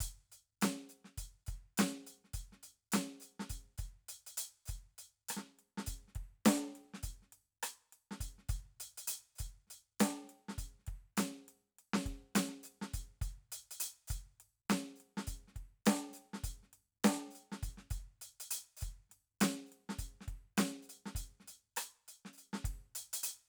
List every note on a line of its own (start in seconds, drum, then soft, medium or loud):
0.00 closed hi-hat loud
0.00 kick soft
0.32 closed hi-hat soft
0.61 closed hi-hat loud
0.61 snare loud
0.89 open hi-hat soft
0.89 hi-hat pedal soft
1.04 snare soft
1.17 closed hi-hat medium
1.17 kick soft
1.46 closed hi-hat soft
1.46 kick soft
1.77 closed hi-hat loud
1.77 snare loud
1.90 snare soft
2.06 closed hi-hat medium
2.24 snare soft
2.33 closed hi-hat medium
2.33 kick soft
2.52 snare soft
2.63 closed hi-hat soft
2.92 closed hi-hat loud
2.92 snare medium
3.20 closed hi-hat soft
3.20 hi-hat pedal soft
3.39 snare soft
3.49 closed hi-hat medium
3.49 kick soft
3.78 closed hi-hat medium
3.78 kick soft
4.08 closed hi-hat medium
4.26 closed hi-hat medium
4.37 closed hi-hat loud
4.65 closed hi-hat medium
4.65 kick soft
4.65 hi-hat pedal soft
4.98 closed hi-hat medium
5.28 closed hi-hat loud
5.28 cross-stick medium
5.36 snare soft
5.59 closed hi-hat soft
5.77 snare medium
5.86 closed hi-hat medium
5.86 kick soft
6.08 snare soft
6.15 kick soft
6.15 closed hi-hat soft
6.45 closed hi-hat loud
6.45 snare loud
6.75 closed hi-hat soft
6.94 snare soft
7.03 closed hi-hat medium
7.03 kick soft
7.22 snare soft
7.32 closed hi-hat soft
7.62 closed hi-hat loud
7.62 cross-stick medium
7.92 closed hi-hat soft
8.11 snare soft
8.20 closed hi-hat medium
8.20 kick soft
8.38 snare soft
8.49 closed hi-hat medium
8.49 kick medium
8.59 kick soft
8.80 closed hi-hat medium
8.97 closed hi-hat medium
9.07 closed hi-hat loud
9.35 closed hi-hat medium
9.35 hi-hat pedal soft
9.40 kick soft
9.67 closed hi-hat medium
9.67 snare soft
10.00 closed hi-hat loud
10.00 snare medium
10.29 closed hi-hat soft
10.48 snare soft
10.58 closed hi-hat medium
10.58 kick soft
10.79 snare soft
10.83 snare soft
10.83 closed hi-hat soft
10.87 kick soft
11.17 closed hi-hat loud
11.17 snare medium
11.48 closed hi-hat soft
11.78 closed hi-hat soft
11.93 snare medium
12.06 kick soft
12.06 closed hi-hat soft
12.11 kick soft
12.35 closed hi-hat loud
12.35 snare loud
12.48 snare soft
12.63 closed hi-hat soft
12.63 hi-hat pedal medium
12.81 snare medium
12.93 closed hi-hat medium
12.93 kick soft
13.21 closed hi-hat medium
13.21 kick soft
13.30 kick soft
13.52 closed hi-hat medium
13.71 closed hi-hat medium
13.80 closed hi-hat loud
14.07 closed hi-hat medium
14.07 kick soft
14.07 hi-hat pedal medium
14.40 closed hi-hat soft
14.69 closed hi-hat medium
14.69 snare loud
14.95 hi-hat pedal soft
15.00 closed hi-hat soft
15.17 snare medium
15.27 closed hi-hat medium
15.27 kick soft
15.47 snare soft
15.53 kick soft
15.53 snare soft
15.53 closed hi-hat soft
15.86 closed hi-hat loud
15.86 snare loud
16.13 closed hi-hat soft
16.13 hi-hat pedal medium
16.33 snare soft
16.43 closed hi-hat medium
16.43 kick soft
16.63 snare soft
16.73 closed hi-hat soft
17.04 closed hi-hat medium
17.04 snare loud
17.17 snare soft
17.30 hi-hat pedal soft
17.35 closed hi-hat soft
17.52 snare soft
17.62 closed hi-hat medium
17.62 kick soft
17.68 kick soft
17.77 snare soft
17.90 closed hi-hat medium
17.90 kick soft
17.97 kick soft
18.00 kick soft
18.21 closed hi-hat medium
18.40 closed hi-hat medium
18.50 closed hi-hat loud
18.76 closed hi-hat medium
18.76 hi-hat pedal medium
18.82 kick soft
19.09 snare soft
19.09 closed hi-hat soft
19.40 closed hi-hat loud
19.40 snare loud
19.66 hi-hat pedal soft
19.72 closed hi-hat soft
19.89 snare medium
19.98 closed hi-hat medium
19.98 kick soft
20.20 snare soft
20.27 kick soft
20.27 closed hi-hat soft
20.57 closed hi-hat medium
20.57 snare loud
20.82 hi-hat pedal soft
20.89 closed hi-hat medium
21.06 snare soft
21.15 closed hi-hat medium
21.15 kick soft
21.20 kick soft
21.40 snare soft
21.44 closed hi-hat medium
21.44 snare soft
21.48 snare soft
21.76 closed hi-hat loud
21.76 cross-stick medium
21.81 closed hi-hat medium
22.08 closed hi-hat medium
22.25 snare soft
22.33 hi-hat pedal soft
22.38 closed hi-hat soft
22.53 snare medium
22.64 kick soft
22.64 closed hi-hat medium
22.70 kick soft
22.73 kick soft
22.95 closed hi-hat medium
23.13 closed hi-hat loud
23.23 closed hi-hat loud